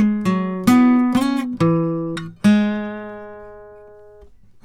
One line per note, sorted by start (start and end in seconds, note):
0.00 0.57 G#3
0.27 1.09 F#3
0.69 1.16 B3
1.17 1.48 C#4
1.62 2.19 E3
1.62 2.18 E3
2.46 4.34 G#3